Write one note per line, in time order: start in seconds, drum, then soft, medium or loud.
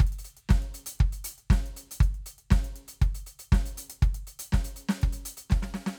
0.01 kick loud
0.01 closed hi-hat medium
0.08 closed hi-hat medium
0.13 closed hi-hat medium
0.19 closed hi-hat medium
0.25 closed hi-hat medium
0.38 closed hi-hat medium
0.50 kick loud
0.50 snare loud
0.63 closed hi-hat soft
0.75 closed hi-hat medium
0.87 closed hi-hat loud
1.00 kick loud
1.00 closed hi-hat soft
1.13 closed hi-hat medium
1.25 closed hi-hat loud
1.39 closed hi-hat medium
1.51 kick loud
1.51 snare loud
1.67 closed hi-hat medium
1.77 closed hi-hat medium
1.92 closed hi-hat medium
2.01 kick loud
2.01 closed hi-hat medium
2.15 closed hi-hat soft
2.27 closed hi-hat medium
2.39 closed hi-hat medium
2.51 kick loud
2.51 snare loud
2.65 closed hi-hat medium
2.77 closed hi-hat medium
2.89 closed hi-hat medium
3.02 kick loud
3.02 closed hi-hat medium
3.16 closed hi-hat medium
3.27 closed hi-hat medium
3.40 closed hi-hat medium
3.53 kick loud
3.53 snare loud
3.67 closed hi-hat medium
3.78 closed hi-hat loud
3.91 closed hi-hat loud
4.03 kick loud
4.03 closed hi-hat medium
4.15 closed hi-hat medium
4.28 closed hi-hat medium
4.40 closed hi-hat loud
4.53 kick loud
4.53 snare loud
4.65 closed hi-hat medium
4.77 closed hi-hat medium
4.90 snare loud
5.03 kick loud
5.03 closed hi-hat medium
5.14 closed hi-hat medium
5.26 closed hi-hat loud
5.38 closed hi-hat medium
5.51 kick loud
5.51 snare medium
5.63 snare medium
5.75 snare medium
5.87 snare loud